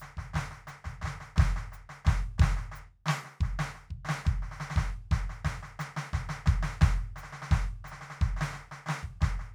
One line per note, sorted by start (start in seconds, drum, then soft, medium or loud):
0.01 snare soft
0.01 hi-hat pedal medium
0.19 kick soft
0.19 snare soft
0.35 kick soft
0.35 snare soft
0.37 snare medium
0.53 snare soft
0.69 snare soft
0.69 hi-hat pedal medium
0.86 kick soft
0.86 snare soft
1.03 kick soft
1.03 snare medium
1.07 snare medium
1.22 snare soft
1.38 kick loud
1.38 snare medium
1.41 snare medium
1.58 snare soft
1.74 snare soft
1.74 hi-hat pedal medium
1.91 snare soft
2.07 kick loud
2.07 snare soft
2.09 snare medium
2.40 kick loud
2.40 snare soft
2.43 snare loud
2.58 snare soft
2.73 snare soft
2.73 hi-hat pedal medium
3.08 snare medium
3.10 snare loud
3.26 snare soft
3.42 kick medium
3.42 snare soft
3.61 snare medium
3.77 snare soft
3.92 kick soft
4.07 snare medium
4.11 snare loud
4.27 kick medium
4.27 snare soft
4.44 snare soft
4.53 snare soft
4.62 snare medium
4.72 snare medium
4.78 kick medium
4.78 snare medium
5.13 kick medium
5.13 snare medium
5.31 snare soft
5.46 kick medium
5.46 snare medium
5.64 snare soft
5.81 snare medium
5.81 hi-hat pedal medium
5.98 snare medium
6.15 kick medium
6.15 snare medium
6.31 snare medium
6.48 kick loud
6.48 snare medium
6.64 snare medium
6.83 kick loud
6.83 snare loud
6.99 snare soft
7.18 snare soft
7.18 hi-hat pedal medium
7.25 snare soft
7.34 snare soft
7.44 snare medium
7.53 kick medium
7.53 snare medium
7.86 snare soft
7.86 hi-hat pedal medium
7.93 snare soft
8.03 snare soft
8.12 snare soft
8.23 kick medium
8.23 snare soft
8.38 snare soft
8.43 snare loud
8.55 snare soft
8.73 snare soft
8.88 snare medium
8.90 snare medium
9.05 kick soft
9.23 kick medium
9.23 snare soft
9.24 snare medium
9.41 snare soft